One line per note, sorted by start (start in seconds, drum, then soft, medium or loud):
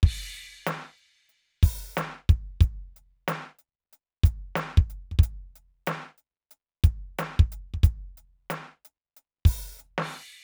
0.03 kick loud
0.03 crash loud
0.34 closed hi-hat soft
0.67 snare loud
0.67 closed hi-hat loud
0.98 closed hi-hat soft
1.29 closed hi-hat soft
1.63 kick loud
1.63 open hi-hat loud
1.94 snare loud
1.94 closed hi-hat loud
1.94 hi-hat pedal loud
2.29 kick loud
2.29 closed hi-hat medium
2.61 kick loud
2.61 closed hi-hat medium
2.96 closed hi-hat medium
3.28 snare loud
3.28 closed hi-hat loud
3.59 closed hi-hat soft
3.93 closed hi-hat medium
4.24 kick loud
4.24 closed hi-hat loud
4.55 snare loud
4.55 closed hi-hat loud
4.77 kick loud
4.90 closed hi-hat medium
5.11 kick soft
5.19 kick loud
5.23 closed hi-hat loud
5.55 closed hi-hat medium
5.87 snare loud
5.87 closed hi-hat loud
6.18 closed hi-hat soft
6.51 closed hi-hat medium
6.84 kick loud
6.84 closed hi-hat loud
7.18 snare loud
7.18 closed hi-hat loud
7.39 kick loud
7.52 closed hi-hat medium
7.74 kick medium
7.83 kick loud
7.83 closed hi-hat loud
8.17 closed hi-hat medium
8.50 snare loud
8.50 closed hi-hat loud
8.85 closed hi-hat medium
9.16 closed hi-hat medium
9.45 kick loud
9.45 open hi-hat loud
9.78 hi-hat pedal loud
9.98 snare loud
9.98 crash medium